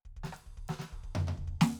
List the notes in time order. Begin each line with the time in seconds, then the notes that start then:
0.06 kick
0.17 kick
0.24 snare, ride
0.33 cross-stick
0.37 ride
0.47 kick
0.58 kick
0.69 snare, ride
0.79 snare, ride
0.93 kick
1.04 kick
1.16 floor tom, high tom
1.28 floor tom, high tom
1.38 kick
1.48 kick
1.62 snare, ride